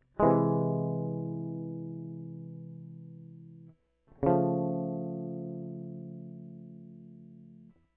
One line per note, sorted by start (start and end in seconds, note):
0.20 3.75 E3
0.20 3.73 G#3
0.26 3.73 C3
4.24 7.74 C#3
4.24 7.75 F3
4.30 7.74 A3